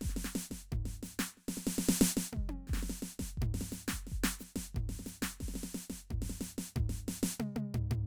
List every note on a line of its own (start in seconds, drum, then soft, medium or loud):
0.01 kick soft
0.01 snare soft
0.09 snare soft
0.15 snare soft
0.15 snare medium
0.24 snare medium
0.35 snare medium
0.35 hi-hat pedal medium
0.50 kick soft
0.50 snare soft
0.72 kick soft
0.72 floor tom medium
0.85 snare soft
1.03 snare soft
1.03 hi-hat pedal medium
1.19 snare medium
1.37 snare soft
1.48 snare medium
1.57 snare soft
1.67 snare medium
1.78 snare medium
1.88 snare loud
2.01 snare loud
2.17 snare medium
2.33 kick soft
2.33 mid tom medium
2.49 high tom medium
2.67 kick soft
2.67 snare soft
2.73 kick soft
2.73 snare soft
2.77 snare soft
2.82 snare soft
2.89 snare medium
3.02 snare medium
3.19 kick soft
3.19 snare medium
3.37 kick soft
3.42 floor tom medium
3.54 snare soft
3.61 snare soft
3.71 snare soft
3.71 hi-hat pedal medium
3.88 snare medium
3.92 kick soft
4.07 snare soft
4.12 kick soft
4.23 snare medium
4.39 snare soft
4.39 hi-hat pedal medium
4.56 kick soft
4.56 snare medium
4.74 kick soft
4.74 floor tom medium
4.89 snare soft
4.99 snare soft
5.05 snare soft
5.05 hi-hat pedal medium
5.22 kick soft
5.22 snare medium
5.40 kick soft
5.40 snare soft
5.48 snare soft
5.54 snare soft
5.55 snare soft
5.63 snare soft
5.74 snare medium
5.74 hi-hat pedal soft
5.90 kick soft
5.90 snare soft
6.10 kick soft
6.10 floor tom medium
6.22 snare soft
6.29 snare soft
6.41 snare medium
6.41 hi-hat pedal medium
6.58 snare medium
6.76 kick soft
6.76 floor tom medium
6.89 snare soft
7.08 snare medium
7.23 snare medium
7.40 mid tom loud
7.56 mid tom loud
7.74 floor tom loud
7.91 floor tom medium